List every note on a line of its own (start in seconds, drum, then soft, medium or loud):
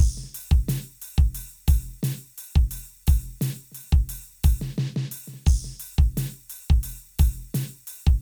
0.01 kick loud
0.01 crash loud
0.19 snare soft
0.26 snare soft
0.37 open hi-hat loud
0.53 kick loud
0.71 open hi-hat loud
0.71 snare loud
1.04 open hi-hat loud
1.20 kick loud
1.37 open hi-hat loud
1.70 open hi-hat loud
1.70 kick loud
2.05 open hi-hat loud
2.05 snare loud
2.40 open hi-hat loud
2.58 kick loud
2.73 open hi-hat loud
3.09 open hi-hat loud
3.09 kick loud
3.43 open hi-hat loud
3.43 snare loud
3.74 open hi-hat loud
3.74 snare soft
3.94 kick loud
4.11 open hi-hat loud
4.46 open hi-hat loud
4.46 kick loud
4.63 snare medium
4.80 snare loud
4.98 snare loud
5.13 open hi-hat loud
5.30 snare soft
5.36 snare soft
5.48 kick loud
5.48 crash loud
5.66 snare soft
5.82 open hi-hat loud
6.00 kick loud
6.19 open hi-hat loud
6.19 snare loud
6.27 snare soft
6.52 open hi-hat loud
6.72 kick loud
6.85 open hi-hat loud
7.21 open hi-hat loud
7.21 kick loud
7.56 open hi-hat loud
7.56 snare loud
7.89 open hi-hat loud
8.09 kick loud